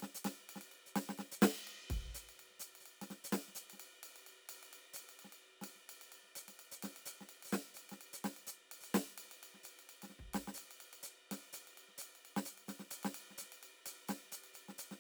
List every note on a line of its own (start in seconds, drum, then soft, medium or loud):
0.01 snare soft
0.01 ride soft
0.15 hi-hat pedal medium
0.25 snare medium
0.25 ride medium
0.50 ride medium
0.56 snare soft
0.62 ride medium
0.72 ride soft
0.87 hi-hat pedal soft
0.96 snare medium
0.96 ride medium
1.10 snare soft
1.18 snare soft
1.18 ride soft
1.32 hi-hat pedal medium
1.42 snare loud
1.42 ride medium
1.68 ride medium
1.91 kick medium
1.91 ride medium
2.09 snare soft
2.15 hi-hat pedal medium
2.15 ride medium
2.29 ride soft
2.40 ride soft
2.51 snare soft
2.60 hi-hat pedal medium
2.60 ride medium
2.76 ride soft
2.81 hi-hat pedal soft
2.86 ride medium
3.02 snare soft
3.02 ride medium
3.11 snare soft
3.11 ride soft
3.25 hi-hat pedal medium
3.33 snare medium
3.33 ride medium
3.49 snare soft
3.56 hi-hat pedal medium
3.56 ride medium
3.71 snare soft
3.71 ride medium
3.80 ride medium
4.04 ride medium
4.17 ride soft
4.27 ride soft
4.50 ride medium
4.64 ride soft
4.94 hi-hat pedal medium
4.94 ride medium
5.10 ride soft
5.25 snare soft
5.33 ride soft
5.62 snare soft
5.62 ride medium
5.76 snare soft
5.90 ride medium
6.02 ride medium
6.13 ride medium
6.24 snare soft
6.36 hi-hat pedal medium
6.36 ride medium
6.49 snare soft
6.49 ride medium
6.60 ride medium
6.72 hi-hat pedal medium
6.83 snare soft
6.83 ride medium
6.97 ride medium
7.06 hi-hat pedal medium
7.06 ride medium
7.21 snare soft
7.30 ride medium
7.43 hi-hat pedal soft
7.43 ride medium
7.53 snare medium
7.53 ride medium
7.75 hi-hat pedal soft
7.75 ride medium
7.90 snare soft
7.90 ride soft
8.02 ride medium
8.14 hi-hat pedal medium
8.25 snare medium
8.25 ride medium
8.37 ride soft
8.47 hi-hat pedal medium
8.47 ride soft
8.72 ride medium
8.81 hi-hat pedal soft
8.81 ride medium
8.95 snare loud
8.95 ride medium
9.18 ride medium
9.32 ride medium
9.44 ride medium
9.55 snare soft
9.64 hi-hat pedal soft
9.64 ride medium
9.80 ride soft
10.03 snare soft
10.03 ride medium
10.10 snare soft
10.20 kick soft
10.34 snare medium
10.34 ride medium
10.48 snare soft
10.55 hi-hat pedal medium
10.55 ride medium
10.72 ride medium
10.81 ride medium
10.94 ride medium
11.04 hi-hat pedal medium
11.32 snare soft
11.32 ride medium
11.53 hi-hat pedal medium
11.53 ride medium
11.68 ride soft
11.89 snare soft
11.99 hi-hat pedal medium
11.99 ride medium
12.16 ride soft
12.26 ride soft
12.37 snare medium
12.46 hi-hat pedal medium
12.46 ride medium
12.58 ride soft
12.67 snare soft
12.67 hi-hat pedal soft
12.67 ride medium
12.80 snare soft
12.91 hi-hat pedal medium
12.91 ride medium
13.04 snare medium
13.04 ride medium
13.15 ride medium
13.31 snare soft
13.38 snare soft
13.38 hi-hat pedal medium
13.38 ride medium
13.53 ride medium
13.64 ride medium
13.86 hi-hat pedal medium
13.86 ride medium
14.08 snare medium
14.08 hi-hat pedal soft
14.08 ride medium
14.33 hi-hat pedal medium
14.33 ride medium
14.44 ride soft
14.54 hi-hat pedal soft
14.54 ride medium
14.69 snare soft
14.79 hi-hat pedal medium
14.79 ride medium
14.92 snare soft